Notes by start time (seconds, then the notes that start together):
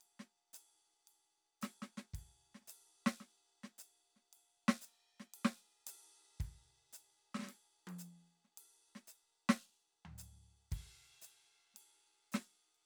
0.01 ride
0.20 snare
0.53 hi-hat pedal, ride
1.07 ride
1.61 snare, hi-hat pedal, ride
1.82 snare
1.97 snare
2.14 kick, ride
2.55 snare
2.61 snare
2.68 hi-hat pedal, ride
3.06 snare, ride
3.20 snare
3.64 snare
3.78 hi-hat pedal, ride
4.16 snare
4.33 ride
4.68 snare, ride
4.81 hi-hat pedal, ride
5.20 snare
5.34 ride
5.45 snare
5.87 hi-hat pedal, ride
6.32 crash
6.40 kick, ride
6.93 hi-hat pedal, ride
7.35 snare
7.39 snare
7.42 snare
7.45 snare
7.47 snare, ride
7.87 high tom, ride
7.99 hi-hat pedal, ride
8.44 snare
8.58 ride
8.95 snare
9.07 hi-hat pedal
9.12 ride
9.49 snare, ride
10.05 floor tom
10.18 hi-hat pedal, ride
10.71 kick, ride, crash
11.22 hi-hat pedal, ride
11.74 snare, ride
12.32 snare, hi-hat pedal, ride
12.75 ride